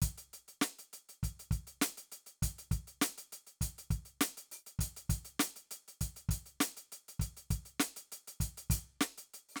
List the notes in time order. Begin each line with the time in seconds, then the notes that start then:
0.01 closed hi-hat, kick
0.18 closed hi-hat
0.33 closed hi-hat
0.48 closed hi-hat
0.61 closed hi-hat, snare
0.79 open hi-hat
0.93 closed hi-hat
1.09 closed hi-hat
1.23 closed hi-hat, kick
1.39 closed hi-hat
1.51 closed hi-hat, kick
1.67 closed hi-hat
1.81 closed hi-hat, snare, hi-hat pedal
1.97 open hi-hat
2.12 closed hi-hat
2.26 closed hi-hat
2.42 closed hi-hat, kick
2.58 closed hi-hat
2.71 closed hi-hat, kick
2.87 closed hi-hat
3.01 closed hi-hat, snare
3.18 closed hi-hat
3.32 closed hi-hat
3.47 closed hi-hat
3.61 closed hi-hat, kick
3.78 closed hi-hat
3.91 closed hi-hat, kick
4.05 closed hi-hat
4.21 closed hi-hat, snare
4.37 closed hi-hat
4.51 open hi-hat
4.66 closed hi-hat
4.79 closed hi-hat, kick
4.96 closed hi-hat
5.09 closed hi-hat, kick
5.25 closed hi-hat
5.40 closed hi-hat, snare
5.56 closed hi-hat
5.71 closed hi-hat
5.88 closed hi-hat
6.01 closed hi-hat, kick
6.16 closed hi-hat
6.29 closed hi-hat, kick
6.46 closed hi-hat
6.60 closed hi-hat, snare
6.77 closed hi-hat
6.92 closed hi-hat
7.08 closed hi-hat
7.20 closed hi-hat, kick
7.37 closed hi-hat
7.50 closed hi-hat, kick
7.65 closed hi-hat
7.80 closed hi-hat, snare
7.96 open hi-hat
8.12 closed hi-hat
8.28 closed hi-hat
8.40 closed hi-hat, kick
8.57 closed hi-hat
8.70 open hi-hat, kick
9.01 open hi-hat, snare, hi-hat pedal
9.18 closed hi-hat
9.34 closed hi-hat
9.49 open hi-hat
9.56 snare